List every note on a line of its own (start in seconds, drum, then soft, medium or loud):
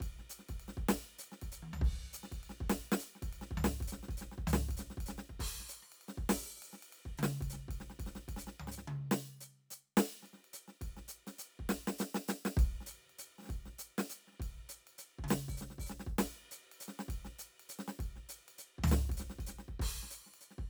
0.01 kick medium
0.01 ride medium
0.20 snare soft
0.30 hi-hat pedal medium
0.30 ride medium
0.40 snare soft
0.49 kick soft
0.49 ride soft
0.60 ride soft
0.69 snare soft
0.78 kick medium
0.89 snare loud
0.89 ride medium
1.19 hi-hat pedal medium
1.24 ride soft
1.33 snare soft
1.42 kick soft
1.42 ride soft
1.53 hi-hat pedal medium
1.53 ride soft
1.63 high tom soft
1.74 floor tom medium
1.82 kick medium
1.82 crash soft
2.14 hi-hat pedal medium
2.14 ride medium
2.24 snare soft
2.32 kick soft
2.32 ride soft
2.44 ride soft
2.50 snare soft
2.61 kick medium
2.70 snare loud
2.70 ride medium
2.93 snare loud
3.00 hi-hat pedal medium
3.04 ride soft
3.16 snare soft
3.23 kick medium
3.23 ride medium
3.33 ride soft
3.42 snare soft
3.52 kick medium
3.58 floor tom medium
3.65 snare loud
3.81 kick medium
3.81 ride medium
3.88 hi-hat pedal medium
3.93 snare soft
4.04 snare soft
4.09 kick medium
4.09 ride bell soft
4.18 snare soft
4.18 hi-hat pedal medium
4.32 snare soft
4.38 kick medium
4.48 floor tom medium
4.48 hi-hat pedal medium
4.54 snare loud
4.69 kick soft
4.69 ride medium
4.78 snare soft
4.78 hi-hat pedal medium
4.91 snare soft
4.98 kick medium
4.98 ride medium
5.07 snare soft
5.07 hi-hat pedal medium
5.19 snare soft
5.30 kick soft
5.40 kick medium
5.40 crash medium
5.61 snare soft
5.70 hi-hat pedal medium
5.74 ride soft
5.83 cross-stick soft
5.93 ride soft
6.02 ride soft
6.09 snare soft
6.18 kick medium
6.30 open hi-hat medium
6.30 snare loud
6.63 ride medium
6.74 snare soft
6.83 ride medium
7.06 kick soft
7.18 hi-hat pedal soft
7.18 mid tom medium
7.24 snare medium
7.41 kick medium
7.41 ride medium
7.50 snare soft
7.50 hi-hat pedal medium
7.60 snare soft
7.69 kick medium
7.69 ride medium
7.81 snare soft
7.91 snare soft
8.00 kick soft
8.00 ride medium
8.07 snare soft
8.16 snare soft
8.29 kick soft
8.29 ride medium
8.37 snare soft
8.37 hi-hat pedal medium
8.48 snare soft
8.60 floor tom soft
8.68 snare soft
8.72 hi-hat pedal medium
8.79 snare soft
8.88 mid tom medium
9.12 snare loud
9.41 hi-hat pedal medium
9.71 hi-hat pedal medium
9.98 snare loud
9.98 ride medium
10.23 snare soft
10.23 ride soft
10.34 snare soft
10.38 snare soft
10.45 ride soft
10.54 hi-hat pedal medium
10.54 ride soft
10.69 snare soft
10.82 kick soft
10.82 ride medium
10.97 snare soft
11.09 hi-hat pedal medium
11.09 ride soft
11.28 snare soft
11.28 ride medium
11.39 hi-hat pedal medium
11.39 ride soft
11.60 kick soft
11.70 snare medium
11.70 ride medium
11.88 snare medium
11.99 snare medium
11.99 hi-hat pedal medium
12.15 snare medium
12.29 snare medium
12.29 hi-hat pedal medium
12.46 snare medium
12.58 kick loud
12.58 ride medium
12.81 snare soft
12.87 hi-hat pedal medium
12.92 ride soft
13.10 ride soft
13.19 hi-hat pedal medium
13.19 ride medium
13.39 snare soft
13.42 snare soft
13.45 snare soft
13.48 kick medium
13.48 snare soft
13.48 ride soft
13.66 snare soft
13.79 hi-hat pedal medium
13.79 ride soft
13.99 snare medium
13.99 ride medium
14.10 hi-hat pedal medium
14.10 ride soft
14.28 snare soft
14.33 snare soft
14.40 kick medium
14.40 ride medium
14.70 hi-hat pedal medium
14.70 ride soft
14.88 ride soft
14.99 hi-hat pedal medium
14.99 ride soft
15.19 kick soft
15.25 mid tom medium
15.29 snare loud
15.29 hi-hat pedal medium
15.49 open hi-hat soft
15.49 kick soft
15.58 snare soft
15.58 hi-hat pedal medium
15.71 snare soft
15.79 open hi-hat medium
15.79 kick soft
15.87 snare soft
15.87 hi-hat pedal medium
16.00 snare soft
16.07 kick medium
16.19 snare loud
16.19 ride medium
16.52 hi-hat pedal medium
16.52 ride soft
16.72 ride soft
16.81 hi-hat pedal medium
16.81 ride medium
16.89 snare soft
17.00 snare medium
17.09 kick medium
17.09 ride medium
17.25 snare soft
17.39 hi-hat pedal medium
17.39 ride medium
17.60 ride soft
17.70 hi-hat pedal medium
17.70 ride soft
17.80 snare medium
17.89 snare medium
18.00 kick medium
18.00 ride soft
18.16 snare soft
18.30 hi-hat pedal medium
18.30 ride medium
18.49 ride soft
18.59 hi-hat pedal medium
18.59 ride soft
18.79 kick soft
18.84 floor tom loud
18.84 hi-hat pedal medium
18.92 snare loud
19.10 kick medium
19.10 ride medium
19.18 snare soft
19.18 hi-hat pedal medium
19.39 kick soft
19.39 ride bell soft
19.47 snare soft
19.47 hi-hat pedal medium
19.59 snare soft
19.69 kick soft
19.80 kick medium
19.80 crash medium
20.03 snare soft
20.11 hi-hat pedal medium
20.16 ride soft
20.27 snare soft
20.35 ride soft
20.41 hi-hat pedal soft
20.51 snare soft
20.59 kick medium